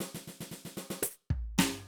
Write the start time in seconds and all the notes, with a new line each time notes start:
0.00 snare
0.15 snare
0.27 snare
0.41 snare
0.51 snare
0.65 snare
0.77 snare
0.90 snare
1.03 high tom
1.30 kick
1.58 snare, floor tom